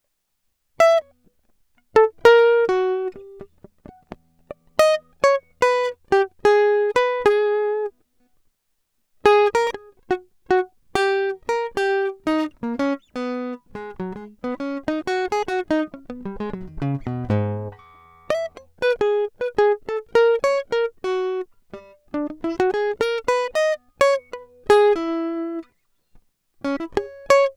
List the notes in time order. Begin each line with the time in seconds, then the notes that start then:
0.81 E5
0.99 D#5
1.97 A4
2.26 A#4
2.70 F#4
3.09 F4
4.80 D#5
5.24 C#5
5.63 B4
6.13 G4
6.46 G#4
6.97 B4
7.26 G#4
9.26 G#4
9.55 A#4
9.75 G#4
10.11 F#4
10.51 F#4
10.96 G4
11.50 A#4
11.78 G4
12.28 D#4
12.64 A#3
12.80 C#4
13.16 B3
13.76 G#3
14.01 F#3
14.13 G#3
14.45 B3
14.61 C#4
14.89 D#4
15.08 F#4
15.33 G#4
15.49 F#4
15.71 D#4
15.95 C#4
16.11 B3
16.26 G3
16.41 G#3
16.83 C#3
17.07 B2
17.31 G#2
18.31 E5
18.83 B4
19.02 G#4
19.42 B4
19.59 G#4
19.89 A4
20.16 A#4
20.45 C#5
20.73 A#4
21.05 F#4
22.15 D4
22.28 D#4
22.45 E4
22.61 F#4
22.75 G#4
23.01 A#4
23.29 B4
23.56 D#5
24.02 C#5
24.34 B4
24.70 G#4
24.96 E4
26.65 C#4
26.82 E4
27.31 C#5